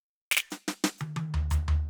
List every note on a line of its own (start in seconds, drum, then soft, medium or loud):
0.31 snare loud
0.37 snare loud
0.50 snare medium
0.50 hi-hat pedal soft
0.68 snare medium
0.84 snare loud
0.98 hi-hat pedal soft
0.98 high tom loud
1.16 high tom loud
1.34 floor tom loud
1.50 floor tom loud
1.50 hi-hat pedal medium
1.68 floor tom loud